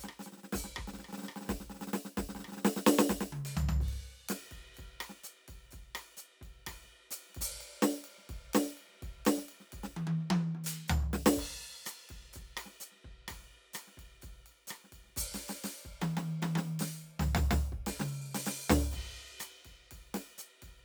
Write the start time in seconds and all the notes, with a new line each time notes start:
0.01 snare, hi-hat pedal
0.09 cross-stick
0.14 cross-stick
0.20 snare, hi-hat pedal
0.27 snare
0.33 snare
0.38 snare
0.44 snare
0.53 kick, snare, hi-hat pedal
0.63 kick, snare
0.77 kick, cross-stick
0.88 snare
0.94 snare
1.00 snare
1.05 cross-stick
1.09 snare
1.14 snare
1.19 snare
1.23 snare
1.24 snare
1.29 cross-stick
1.32 cross-stick
1.37 snare
1.42 snare
1.46 kick, snare
1.50 snare
1.60 kick, snare
1.70 snare
1.75 snare
1.80 snare
1.82 snare
1.88 snare
1.94 snare
2.06 snare
2.18 kick, snare
2.24 kick
2.30 snare
2.36 snare
2.40 snare
2.45 cross-stick, snare
2.53 snare
2.58 snare
2.62 snare
2.66 snare
2.77 snare
2.87 snare
3.00 snare
3.10 kick, snare, hi-hat pedal
3.21 snare
3.32 kick, mid tom
3.46 closed hi-hat
3.57 floor tom, hi-hat pedal
3.69 floor tom
3.81 kick, hi-hat pedal, crash
3.87 kick, crash
3.94 crash
4.29 snare, hi-hat pedal, ride
4.52 kick, ride
4.67 snare
4.75 hi-hat pedal, ride
4.79 kick
5.01 cross-stick, ride
5.10 snare
5.24 hi-hat pedal, ride
5.49 kick, ride
5.55 kick
5.71 kick, hi-hat pedal, ride
5.79 kick
5.96 cross-stick, ride
6.18 hi-hat pedal
6.42 kick, ride
6.67 kick, cross-stick, ride
6.84 snare
7.12 hi-hat pedal, ride
7.30 snare
7.35 kick, ride
7.42 hi-hat pedal
7.61 ride
7.83 snare, ride
8.05 ride
8.19 snare
8.23 snare
8.26 kick, snare, ride
8.37 kick
8.54 snare, ride
8.74 snare
8.78 ride
8.89 snare
8.93 snare
8.96 snare
9.00 kick, snare, ride
9.10 kick
9.22 kick
9.26 snare, ride
9.38 snare
9.49 ride
9.61 snare
9.73 kick, ride
9.79 kick
9.84 snare
9.97 high tom
10.08 high tom
10.21 high tom
10.31 high tom
10.56 high tom
10.65 closed hi-hat, hi-hat pedal
10.89 hi-hat pedal, floor tom
11.03 high tom
11.10 kick, snare
11.27 snare
11.37 kick, crash
11.43 kick
11.87 cross-stick, hi-hat pedal, ride
12.10 kick, ride
12.16 kick
12.21 snare
12.25 snare
12.28 snare
12.34 kick, hi-hat pedal, ride
12.42 kick
12.58 cross-stick, ride
12.66 snare
12.81 hi-hat pedal
12.92 snare
12.96 snare
13.05 kick
13.10 kick
13.29 kick, cross-stick, hi-hat pedal, ride
13.36 kick
13.42 snare
13.74 cross-stick, hi-hat pedal, ride
13.88 snare
13.98 kick, ride
14.03 kick
14.22 kick, hi-hat pedal, ride
14.29 kick
14.47 ride
14.68 cross-stick, hi-hat pedal, ride
14.85 snare
14.93 kick, ride
15.04 snare
15.08 snare
15.17 kick, hi-hat pedal, ride
15.24 kick
15.35 snare, closed hi-hat
15.49 snare, closed hi-hat
15.65 snare, closed hi-hat
15.86 kick
16.02 snare, high tom
16.18 snare, high tom
16.43 snare, high tom
16.56 snare, high tom
16.80 snare, closed hi-hat
17.02 kick
17.20 snare, floor tom
17.36 snare, floor tom
17.52 snare, floor tom
17.73 kick
17.87 snare, closed hi-hat
18.00 snare, mid tom
18.35 snare, closed hi-hat
18.47 snare, closed hi-hat
18.70 snare, floor tom
18.92 kick, ride
19.00 kick
19.06 cross-stick
19.41 cross-stick, hi-hat pedal, ride
19.66 kick, ride
19.71 kick
19.92 kick, ride
20.15 snare, ride
20.39 hi-hat pedal, ride
20.63 kick, ride
20.68 kick